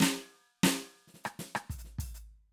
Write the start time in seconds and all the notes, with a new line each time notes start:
0.00 snare
0.63 snare
0.66 snare
1.07 snare
1.14 snare
1.24 cross-stick, hi-hat pedal
1.39 snare
1.55 cross-stick
1.69 open hi-hat, kick
1.78 hi-hat pedal
1.84 snare
1.98 kick, open hi-hat
2.14 hi-hat pedal